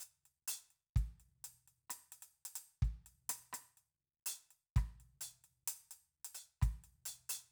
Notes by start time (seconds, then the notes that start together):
0.01 hi-hat pedal
0.05 closed hi-hat
0.26 closed hi-hat
0.49 closed hi-hat
0.71 closed hi-hat
0.97 kick, closed hi-hat
1.21 closed hi-hat
1.45 closed hi-hat
1.69 closed hi-hat
1.91 cross-stick, closed hi-hat
2.13 closed hi-hat
2.23 closed hi-hat
2.46 closed hi-hat
2.56 closed hi-hat
2.83 kick, closed hi-hat
3.07 closed hi-hat
3.30 cross-stick, closed hi-hat
3.54 cross-stick, closed hi-hat
3.78 closed hi-hat
4.27 closed hi-hat
4.52 closed hi-hat
4.77 kick, cross-stick, closed hi-hat
5.01 closed hi-hat
5.22 closed hi-hat
5.45 closed hi-hat
5.69 closed hi-hat
5.92 closed hi-hat
6.26 closed hi-hat
6.36 closed hi-hat
6.62 kick, cross-stick, closed hi-hat
6.85 closed hi-hat
7.06 closed hi-hat
7.30 closed hi-hat